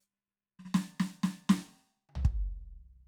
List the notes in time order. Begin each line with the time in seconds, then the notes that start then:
0.00 hi-hat pedal
0.59 snare
0.65 snare
0.75 snare
1.00 snare
1.24 snare
1.50 snare
2.09 high tom
2.16 floor tom
2.25 kick